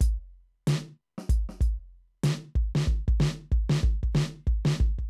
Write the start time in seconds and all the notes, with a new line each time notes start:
0.01 closed hi-hat, kick
0.68 closed hi-hat, snare
1.18 snare
1.30 closed hi-hat, kick
1.49 snare
1.61 closed hi-hat, kick
2.24 closed hi-hat, snare
2.56 kick
2.75 snare
2.88 kick
2.92 snare
3.08 kick
3.20 snare
3.52 kick
3.70 snare
3.84 kick
4.03 kick
4.11 kick, ride
4.15 snare
4.47 kick
4.65 snare
4.80 kick
4.99 kick